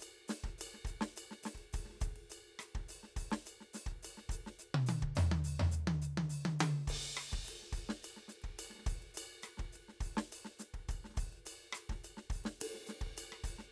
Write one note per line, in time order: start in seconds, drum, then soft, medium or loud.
0.01 hi-hat pedal medium
0.01 ride bell medium
0.29 snare medium
0.29 hi-hat pedal medium
0.29 ride soft
0.44 kick soft
0.44 snare soft
0.59 hi-hat pedal medium
0.59 ride bell medium
0.75 snare soft
0.85 kick soft
0.85 hi-hat pedal medium
0.85 ride soft
1.02 snare medium
1.02 ride soft
1.17 hi-hat pedal medium
1.17 ride bell medium
1.32 snare soft
1.44 snare soft
1.44 hi-hat pedal medium
1.44 ride soft
1.55 kick soft
1.55 ride soft
1.73 kick medium
1.73 hi-hat pedal medium
1.73 ride soft
1.86 snare soft
1.90 snare soft
1.95 snare soft
1.97 snare soft
2.01 kick medium
2.01 hi-hat pedal medium
2.01 ride soft
2.17 ride soft
2.30 hi-hat pedal medium
2.30 ride bell medium
2.60 cross-stick medium
2.60 hi-hat pedal medium
2.60 ride soft
2.75 kick soft
2.75 snare soft
2.89 hi-hat pedal medium
2.89 ride bell soft
3.04 snare soft
3.17 kick soft
3.17 hi-hat pedal medium
3.17 ride soft
3.32 snare medium
3.32 ride soft
3.46 hi-hat pedal medium
3.46 ride bell medium
3.61 snare soft
3.74 snare soft
3.74 hi-hat pedal medium
3.74 ride soft
3.87 kick soft
3.87 ride soft
4.03 hi-hat pedal medium
4.03 ride bell medium
4.18 snare soft
4.30 kick medium
4.30 hi-hat pedal medium
4.30 ride medium
4.47 snare soft
4.60 hi-hat pedal medium
4.75 mid tom loud
4.87 hi-hat pedal medium
4.87 high tom loud
5.03 kick medium
5.16 floor tom loud
5.16 hi-hat pedal medium
5.32 high tom loud
5.45 hi-hat pedal medium
5.60 floor tom loud
5.72 hi-hat pedal medium
5.88 high tom loud
6.02 hi-hat pedal medium
6.18 high tom loud
6.30 hi-hat pedal medium
6.46 high tom loud
6.60 hi-hat pedal medium
6.60 high tom loud
6.88 kick medium
6.88 hi-hat pedal medium
6.88 ride loud
7.17 cross-stick medium
7.17 hi-hat pedal medium
7.32 kick medium
7.32 snare soft
7.45 hi-hat pedal medium
7.49 ride medium
7.63 snare soft
7.73 kick medium
7.73 hi-hat pedal medium
7.73 ride soft
7.88 snare medium
7.88 ride soft
8.03 hi-hat pedal soft
8.03 ride bell medium
8.17 snare soft
8.29 snare soft
8.29 hi-hat pedal medium
8.29 ride soft
8.43 kick soft
8.43 ride soft
8.59 hi-hat pedal medium
8.59 ride bell medium
8.71 snare soft
8.76 snare soft
8.79 snare soft
8.83 snare soft
8.87 kick medium
8.87 hi-hat pedal medium
8.87 ride soft
9.03 ride soft
9.15 hi-hat pedal medium
9.15 ride bell medium
9.43 cross-stick medium
9.43 hi-hat pedal medium
9.43 ride soft
9.58 kick soft
9.58 snare soft
9.73 hi-hat pedal soft
9.73 ride soft
9.89 snare soft
10.01 kick medium
10.01 hi-hat pedal medium
10.01 ride soft
10.16 snare medium
10.16 ride soft
10.33 hi-hat pedal medium
10.33 ride bell medium
10.45 snare soft
10.60 snare soft
10.60 hi-hat pedal medium
10.60 ride soft
10.75 kick soft
10.75 ride soft
10.89 kick medium
10.89 hi-hat pedal soft
10.89 ride bell soft
11.05 snare soft
11.10 snare soft
11.15 kick medium
11.15 snare soft
11.15 hi-hat pedal medium
11.20 ride soft
11.33 ride soft
11.46 hi-hat pedal medium
11.46 ride bell medium
11.73 cross-stick medium
11.73 hi-hat pedal medium
11.73 ride soft
11.90 kick soft
11.90 snare soft
12.04 hi-hat pedal medium
12.04 ride bell soft
12.18 snare soft
12.31 kick medium
12.31 hi-hat pedal medium
12.31 ride soft
12.45 snare medium
12.45 ride soft
12.61 hi-hat pedal medium
12.61 ride loud
12.75 snare soft
12.87 snare soft
12.87 hi-hat pedal medium
12.87 ride soft
13.02 kick soft
13.02 ride soft
13.18 hi-hat pedal medium
13.18 ride bell medium
13.33 cross-stick medium
13.44 kick soft
13.44 hi-hat pedal medium
13.44 ride soft
13.59 snare soft